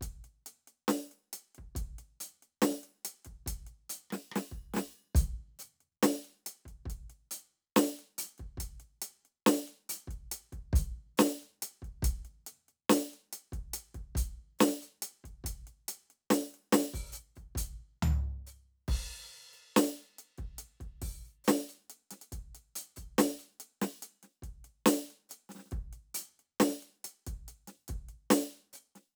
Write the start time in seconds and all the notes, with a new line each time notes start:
0.01 kick, closed hi-hat
0.24 closed hi-hat
0.46 closed hi-hat
0.67 closed hi-hat
0.88 snare, closed hi-hat
1.11 closed hi-hat
1.33 closed hi-hat
1.55 kick, closed hi-hat
1.75 kick, closed hi-hat
1.98 closed hi-hat
2.20 closed hi-hat
2.42 closed hi-hat
2.62 snare, closed hi-hat
2.70 snare
2.83 closed hi-hat
3.05 closed hi-hat
3.25 kick, closed hi-hat
3.46 kick, closed hi-hat
3.67 closed hi-hat
3.90 closed hi-hat
4.10 cross-stick, snare
4.32 cross-stick
4.36 snare
4.51 kick
4.74 snare
4.77 snare
5.15 open hi-hat, kick
5.59 closed hi-hat, hi-hat pedal
5.81 closed hi-hat
6.03 snare, closed hi-hat
6.25 closed hi-hat
6.46 closed hi-hat
6.65 kick, closed hi-hat
6.86 kick
6.90 closed hi-hat
7.10 closed hi-hat
7.31 open hi-hat
7.76 snare, closed hi-hat, hi-hat pedal
7.99 closed hi-hat
8.18 closed hi-hat
8.38 kick, closed hi-hat
8.57 kick, closed hi-hat
8.80 closed hi-hat
9.02 closed hi-hat
9.25 closed hi-hat
9.46 snare, closed hi-hat
9.68 closed hi-hat
9.89 closed hi-hat
10.07 kick, closed hi-hat
10.32 closed hi-hat
10.52 kick, closed hi-hat
10.73 open hi-hat, kick
11.17 snare, hi-hat pedal
11.27 snare
11.43 closed hi-hat
11.62 closed hi-hat
11.82 kick, closed hi-hat
12.02 kick, closed hi-hat
12.25 closed hi-hat
12.47 closed hi-hat
12.68 closed hi-hat
12.90 snare, closed hi-hat
13.13 closed hi-hat
13.33 closed hi-hat
13.52 kick, closed hi-hat
13.74 closed hi-hat
13.94 kick, closed hi-hat
14.15 open hi-hat, kick
14.59 snare, closed hi-hat, hi-hat pedal
14.67 snare
14.82 closed hi-hat
15.02 closed hi-hat
15.24 kick, closed hi-hat
15.44 kick, closed hi-hat
15.67 closed hi-hat
15.88 closed hi-hat
16.10 closed hi-hat
16.30 snare, closed hi-hat
16.54 closed hi-hat
16.73 snare, closed hi-hat
16.80 snare
16.94 open hi-hat, kick
17.12 closed hi-hat, hi-hat pedal
17.36 closed hi-hat, kick
17.55 open hi-hat, kick
18.02 floor tom
18.47 hi-hat pedal
18.88 kick, crash
19.53 closed hi-hat
19.76 closed hi-hat, snare
19.98 closed hi-hat
20.19 closed hi-hat
20.38 kick, closed hi-hat
20.58 closed hi-hat
20.80 kick, closed hi-hat
21.02 kick, open hi-hat
21.24 open hi-hat
21.44 snare, hi-hat pedal
21.48 closed hi-hat
21.69 closed hi-hat
21.90 closed hi-hat
22.11 snare, closed hi-hat
22.21 closed hi-hat
22.32 kick, closed hi-hat
22.55 closed hi-hat
22.76 closed hi-hat
22.96 closed hi-hat, kick
23.18 closed hi-hat, snare
23.39 closed hi-hat
23.60 closed hi-hat
23.82 snare, closed hi-hat
24.02 closed hi-hat
24.23 snare, closed hi-hat
24.42 kick, closed hi-hat
24.64 closed hi-hat
24.86 open hi-hat, snare
25.10 open hi-hat
25.29 closed hi-hat, hi-hat pedal
25.49 snare, closed hi-hat
25.55 snare
25.58 snare
25.66 snare
25.71 kick, snare, closed hi-hat
25.93 closed hi-hat
26.14 closed hi-hat
26.39 closed hi-hat
26.60 snare, closed hi-hat
26.68 snare
26.82 closed hi-hat
27.04 closed hi-hat
27.27 kick, closed hi-hat
27.48 closed hi-hat
27.67 snare, closed hi-hat
27.88 kick, closed hi-hat
28.09 closed hi-hat
28.30 closed hi-hat, snare
28.73 closed hi-hat, hi-hat pedal
28.95 snare, closed hi-hat